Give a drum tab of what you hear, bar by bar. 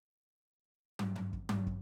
High tom  |------oo-o--|
Floor tom |------oo-o--|
Kick      |--------g-g-|